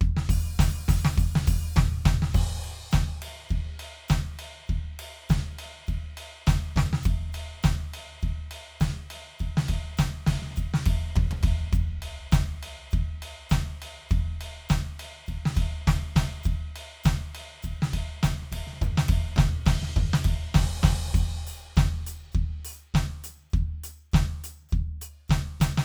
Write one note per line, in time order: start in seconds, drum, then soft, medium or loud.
0.01 kick loud
0.17 snare loud
0.29 kick loud
0.29 percussion loud
0.59 kick loud
0.59 snare loud
0.59 percussion loud
0.88 kick loud
0.88 snare loud
0.88 percussion loud
1.05 snare loud
1.18 kick loud
1.18 percussion medium
1.35 snare loud
1.47 kick loud
1.47 percussion loud
1.76 kick loud
1.76 snare loud
1.76 high tom loud
2.05 kick loud
2.05 snare loud
2.05 high tom loud
2.22 snare loud
2.34 kick loud
2.34 crash loud
2.34 percussion medium
2.64 ride medium
2.91 kick loud
2.91 snare loud
2.91 percussion medium
3.22 ride loud
3.49 kick loud
3.49 ride soft
3.49 percussion soft
3.79 ride bell loud
4.08 kick medium
4.08 snare loud
4.08 percussion medium
4.39 ride bell loud
4.67 kick loud
4.67 ride soft
4.67 percussion soft
4.99 ride loud
5.29 kick medium
5.29 snare loud
5.29 ride medium
5.29 percussion medium
5.59 ride bell loud
5.87 kick medium
5.87 ride medium
5.87 percussion soft
6.17 ride bell loud
6.47 kick loud
6.47 snare loud
6.47 ride bell medium
6.47 percussion medium
6.76 kick medium
6.76 snare loud
6.76 mid tom loud
6.93 snare loud
7.03 kick loud
7.03 ride medium
7.03 percussion medium
7.32 ride bell loud
7.32 percussion soft
7.63 kick loud
7.63 snare loud
7.63 ride medium
7.63 percussion medium
7.94 ride bell loud
8.21 kick medium
8.21 ride medium
8.21 percussion soft
8.51 ride bell loud
8.80 kick medium
8.80 snare loud
8.80 ride medium
8.80 percussion medium
9.10 ride bell loud
9.39 kick medium
9.39 ride medium
9.39 percussion soft
9.57 snare loud
9.69 kick medium
9.69 ride bell loud
9.97 kick medium
9.97 snare loud
9.97 ride medium
9.97 percussion medium
10.27 kick medium
10.27 snare loud
10.27 ride bell loud
10.42 snare medium
10.47 snare soft
10.51 snare soft
10.53 snare soft
10.55 kick medium
10.55 snare soft
10.55 ride medium
10.55 percussion medium
10.74 snare loud
10.86 kick loud
10.86 ride loud
11.16 kick loud
11.16 floor tom loud
11.31 floor tom loud
11.43 kick loud
11.43 ride bell loud
11.73 kick loud
11.73 percussion medium
12.02 ride bell loud
12.32 kick loud
12.32 snare loud
12.32 ride medium
12.32 percussion medium
12.63 ride bell loud
12.91 kick loud
12.91 ride soft
12.91 percussion medium
13.15 kick soft
13.22 ride bell loud
13.50 kick loud
13.50 snare loud
13.50 ride medium
13.50 percussion medium
13.70 kick soft
13.82 ride bell loud
14.09 kick loud
14.09 ride medium
14.09 percussion soft
14.41 ride bell loud
14.41 percussion soft
14.69 kick medium
14.69 snare loud
14.69 ride medium
14.69 percussion medium
15.00 ride bell loud
15.26 kick medium
15.26 ride medium
15.26 percussion soft
15.45 snare loud
15.55 kick loud
15.55 ride bell loud
15.55 percussion soft
15.87 kick loud
15.87 snare loud
15.87 ride loud
16.16 kick medium
16.16 snare loud
16.16 ride bell loud
16.44 kick loud
16.44 ride medium
16.44 percussion medium
16.76 ride bell loud
17.04 kick loud
17.04 snare loud
17.04 ride medium
17.04 percussion medium
17.35 ride bell loud
17.63 kick medium
17.63 ride medium
17.63 percussion medium
17.82 snare loud
17.93 kick medium
17.93 ride bell loud
18.23 kick medium
18.23 snare loud
18.23 ride medium
18.23 percussion medium
18.42 snare soft
18.52 kick medium
18.52 ride loud
18.67 snare soft
18.73 snare soft
18.77 snare soft
18.81 kick loud
18.81 mid tom loud
18.81 percussion medium
18.97 snare loud
19.08 kick loud
19.08 ride loud
19.36 kick loud
19.36 snare loud
19.36 mid tom loud
19.66 kick loud
19.66 snare loud
19.66 ride loud
19.82 snare medium
19.89 cross-stick soft
19.91 cross-stick soft
19.96 kick loud
19.96 mid tom loud
20.13 snare loud
20.25 kick loud
20.25 ride loud
20.54 kick loud
20.54 snare loud
20.54 crash loud
20.83 kick loud
20.83 snare loud
20.83 crash loud
21.06 snare soft
21.14 kick loud
21.14 percussion medium
21.47 percussion loud
21.76 kick loud
21.76 snare loud
21.76 percussion medium
22.07 percussion loud
22.32 kick loud
22.32 percussion soft
22.38 percussion soft
22.65 percussion loud
22.94 kick medium
22.94 snare loud
23.24 percussion loud
23.50 kick loud
23.50 percussion soft
23.55 percussion soft
23.84 percussion loud
24.12 kick loud
24.12 snare loud
24.12 percussion soft
24.44 percussion loud
24.69 kick loud
24.69 percussion soft
24.74 percussion soft
25.01 percussion soft
25.01 percussion loud
25.28 kick medium
25.28 snare loud
25.28 percussion soft
25.32 percussion soft
25.60 kick medium
25.60 snare loud
25.60 percussion loud
25.77 snare loud